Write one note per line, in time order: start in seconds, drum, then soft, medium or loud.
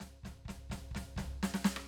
0.00 kick soft
0.00 snare soft
0.00 floor tom soft
0.24 kick soft
0.24 snare soft
0.24 floor tom soft
0.46 kick soft
0.46 snare medium
0.46 floor tom medium
0.70 kick soft
0.70 snare medium
0.70 floor tom medium
0.91 kick soft
0.91 floor tom medium
0.96 snare medium
1.17 kick soft
1.17 snare medium
1.17 floor tom medium
1.43 snare loud
1.54 snare medium
1.65 snare loud
1.77 cross-stick medium